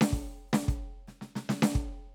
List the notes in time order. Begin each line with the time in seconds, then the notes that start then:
0.00 snare
0.13 open hi-hat, kick
0.48 hi-hat pedal
0.53 snare
0.68 open hi-hat, kick
1.07 snare, hi-hat pedal
1.21 snare
1.35 snare
1.49 snare
1.62 snare
1.75 kick